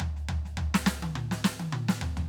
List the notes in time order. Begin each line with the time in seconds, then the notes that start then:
0.00 floor tom
0.16 snare
0.29 floor tom
0.45 snare
0.57 floor tom
0.74 snare
0.86 snare
1.02 high tom
1.15 mid tom
1.31 snare
1.44 snare
1.59 high tom
1.73 mid tom
1.88 snare
2.01 floor tom
2.17 floor tom